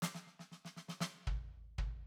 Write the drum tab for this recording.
HH |p---------------|
SD |ooooooooo-------|
FT |----------o---o-|
BD |----------o---o-|